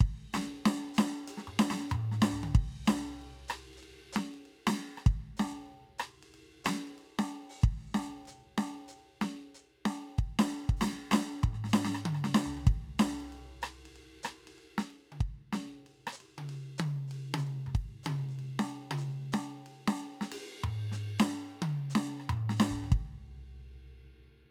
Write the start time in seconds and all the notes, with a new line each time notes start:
0.01 kick, ride
0.33 snare, hi-hat pedal, ride
0.66 snare, ride
0.94 hi-hat pedal, ride
0.99 snare
1.28 hi-hat pedal, ride
1.38 snare
1.48 mid tom
1.60 snare, hi-hat pedal
1.71 snare
1.81 cross-stick
1.89 hi-hat pedal, mid tom
2.00 cross-stick
2.12 snare
2.20 snare, hi-hat pedal
2.32 floor tom
2.44 high tom
2.55 kick, crash
2.86 snare, hi-hat pedal, ride
3.22 ride
3.49 cross-stick, hi-hat pedal, ride
3.74 hi-hat pedal, ride
3.83 ride
4.13 snare, hi-hat pedal, ride
4.34 ride
4.46 ride
4.67 snare, hi-hat pedal
4.98 cross-stick
5.07 kick, hi-hat pedal, ride
5.37 snare, hi-hat pedal
5.99 cross-stick, hi-hat pedal, ride
6.23 ride
6.34 ride
6.65 snare, hi-hat pedal, ride
6.88 ride
6.98 ride
7.19 snare, hi-hat pedal
7.30 ride
7.50 open hi-hat
7.62 kick, ride
7.93 snare, hi-hat pedal
8.26 hi-hat pedal, ride
8.58 snare, ride
8.88 hi-hat pedal, ride
9.22 snare, ride
9.55 hi-hat pedal
9.86 snare, ride
10.19 kick, ride
10.39 snare
10.49 hi-hat pedal, ride
10.70 kick
10.77 hi-hat pedal
10.81 snare
11.12 snare
11.14 snare
11.44 kick, mid tom
11.54 snare
11.65 snare
11.69 hi-hat pedal
11.74 snare
11.85 snare
11.95 cross-stick, hi-hat pedal
12.06 high tom
12.15 cross-stick
12.25 snare
12.35 snare
12.46 floor tom
12.57 high tom
12.67 kick, ride
12.99 snare, hi-hat pedal, ride
13.21 ride
13.33 ride
13.62 cross-stick, hi-hat pedal, ride
13.86 ride
13.96 ride
14.24 cross-stick, hi-hat pedal, ride
14.48 ride
14.59 ride
14.78 snare, hi-hat pedal
14.91 ride
15.12 high tom
15.21 kick, ride
15.53 snare, hi-hat pedal
15.87 ride
16.07 cross-stick
16.13 hi-hat pedal
16.21 ride
16.38 high tom
16.50 ride
16.79 hi-hat pedal, high tom, ride
17.08 hi-hat pedal, ride
17.34 hi-hat pedal, high tom
17.47 ride
17.67 mid tom
17.75 kick, ride
18.04 hi-hat pedal, high tom, ride
18.29 hi-hat pedal, ride
18.39 ride
18.60 snare, hi-hat pedal
18.70 ride
18.91 high tom
18.98 hi-hat pedal
19.02 ride
19.33 snare, hi-hat pedal, ride
19.67 ride
19.88 snare, hi-hat pedal
20.01 ride
20.21 snare, hi-hat pedal
20.32 ride
20.53 cross-stick
20.64 mid tom
20.92 snare, hi-hat pedal
21.19 snare, hi-hat pedal
21.62 high tom
21.90 hi-hat pedal
21.96 snare
22.20 cross-stick
22.30 mid tom
22.37 cross-stick
22.50 snare
22.57 snare, hi-hat pedal
22.71 kick, floor tom
22.84 high tom
22.92 kick, ride